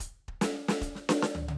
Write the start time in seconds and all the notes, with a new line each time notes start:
0.00 closed hi-hat, kick
0.28 kick
0.41 closed hi-hat, snare
0.68 snare
0.82 closed hi-hat, kick
0.95 snare
1.09 snare
1.23 snare
1.35 floor tom
1.48 high tom